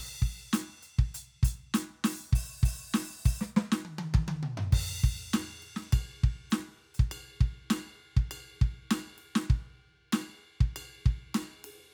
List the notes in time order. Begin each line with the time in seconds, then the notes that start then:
0.23 kick
0.54 closed hi-hat, snare
0.83 closed hi-hat
0.99 kick
1.15 closed hi-hat
1.44 closed hi-hat, kick
1.75 closed hi-hat, snare
2.05 open hi-hat, snare
2.33 open hi-hat, kick
2.64 open hi-hat, kick
2.95 open hi-hat, snare
3.26 open hi-hat, kick
3.42 snare, hi-hat pedal
3.57 snare
3.73 snare
3.86 high tom
3.99 high tom
4.15 kick, high tom
4.29 high tom
4.44 mid tom
4.58 floor tom
4.73 kick, crash
5.04 kick
5.34 snare, ride bell
5.63 ride
5.77 snare
5.93 kick, ride bell
6.24 kick
6.51 snare, hi-hat pedal, ride
6.95 closed hi-hat
7.00 kick
7.12 ride bell
7.42 kick
7.71 snare, ride bell
8.18 kick
8.32 ride bell
8.62 kick, snare
8.92 snare, ride bell
9.19 ride
9.36 snare
9.51 kick
10.13 snare, ride bell
10.61 kick
10.77 ride bell
11.06 kick
11.35 snare, ride bell
11.65 ride